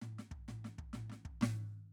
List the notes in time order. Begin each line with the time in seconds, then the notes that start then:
0.02 snare, floor tom
0.19 snare, floor tom
0.32 kick
0.48 snare, floor tom
0.65 snare, floor tom
0.79 kick
0.94 snare, floor tom
1.10 snare, floor tom
1.25 kick
1.42 snare, floor tom